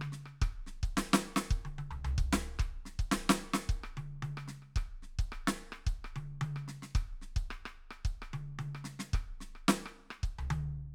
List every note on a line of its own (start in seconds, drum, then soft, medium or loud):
0.01 cross-stick medium
0.12 snare soft
0.26 cross-stick medium
0.41 kick medium
0.41 cross-stick medium
0.66 snare soft
0.83 kick medium
0.97 snare medium
1.13 snare loud
1.36 snare medium
1.50 kick medium
1.65 high tom medium
1.78 high tom medium
1.91 floor tom medium
2.04 floor tom loud
2.18 kick medium
2.32 snare loud
2.59 kick medium
2.59 cross-stick medium
2.85 snare soft
2.99 kick medium
3.11 snare loud
3.29 snare loud
3.53 snare medium
3.69 kick medium
3.83 cross-stick medium
3.97 high tom medium
4.22 high tom loud
4.37 cross-stick medium
4.47 snare soft
4.62 cross-stick soft
4.76 kick medium
4.76 cross-stick medium
5.02 snare soft
5.19 kick medium
5.32 cross-stick medium
5.47 snare medium
5.72 cross-stick medium
5.86 kick medium
6.04 cross-stick medium
6.16 high tom medium
6.41 high tom loud
6.56 cross-stick medium
6.68 snare soft
6.82 snare soft
6.95 kick medium
6.95 cross-stick medium
7.21 snare soft
7.36 kick medium
7.50 cross-stick medium
7.65 cross-stick medium
7.91 cross-stick medium
8.05 kick medium
8.22 cross-stick medium
8.33 high tom medium
8.59 high tom loud
8.75 cross-stick medium
8.84 snare medium
8.99 snare medium
9.13 kick medium
9.13 cross-stick medium
9.40 snare soft
9.55 cross-stick soft
9.68 snare loud
9.86 cross-stick medium
10.10 cross-stick medium
10.23 kick medium
10.38 floor tom medium
10.50 high tom loud